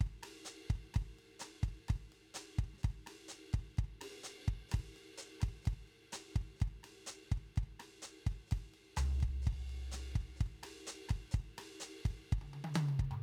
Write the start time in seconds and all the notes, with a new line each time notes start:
0.01 kick, ride
0.07 kick
0.23 cross-stick, snare, ride
0.45 hi-hat pedal, ride
0.70 kick, ride
0.75 kick
0.94 kick, cross-stick, ride
1.02 kick
1.19 ride
1.40 cross-stick, snare, hi-hat pedal, ride
1.63 kick, ride
1.68 kick
1.89 kick, cross-stick, ride
1.96 kick
2.12 ride
2.34 cross-stick, hi-hat pedal, ride
2.59 kick, ride
2.64 kick
2.73 snare
2.78 hi-hat pedal
2.84 kick, cross-stick, ride
2.90 kick
3.07 cross-stick, ride
3.29 hi-hat pedal, ride
3.53 kick, ride
3.59 kick
3.78 kick, ride
3.84 kick
4.01 cross-stick, ride
4.24 hi-hat pedal
4.48 kick
4.53 kick
4.69 cross-stick, snare, hi-hat pedal, ride
4.74 kick
4.80 kick
4.96 ride
5.18 hi-hat pedal, ride
5.41 kick, cross-stick, ride
5.48 kick
5.63 snare, hi-hat pedal, ride
5.67 kick
5.73 kick
5.88 ride
6.13 cross-stick, hi-hat pedal, ride
6.36 kick, ride
6.40 kick, snare
6.56 hi-hat pedal
6.61 kick, ride
6.67 kick
6.83 cross-stick, ride
7.07 hi-hat pedal, ride
7.32 kick, ride
7.37 kick
7.56 kick, ride
7.63 kick
7.80 cross-stick, ride
8.02 hi-hat pedal, ride
8.27 kick, ride
8.32 kick
8.47 hi-hat pedal
8.51 kick, snare, ride
8.57 kick
8.74 ride
8.97 floor tom, hi-hat pedal, ride
9.21 kick, ride
9.28 kick
9.42 hi-hat pedal, ride
9.47 kick, snare
9.53 kick
9.70 ride
9.92 snare, hi-hat pedal, ride
10.16 kick, ride
10.21 kick
10.36 hi-hat pedal
10.41 kick, ride
10.46 kick
10.63 cross-stick, ride
10.87 hi-hat pedal, ride
11.09 kick, cross-stick, ride
11.16 kick
11.31 kick, hi-hat pedal, ride
11.39 kick, snare
11.58 cross-stick, snare, ride
11.80 hi-hat pedal, ride
12.05 kick, ride
12.11 kick
12.32 kick, ride
12.38 kick, high tom
12.54 high tom
12.64 high tom
12.74 hi-hat pedal, high tom
12.89 high tom
12.99 kick, mid tom
13.04 kick
13.11 mid tom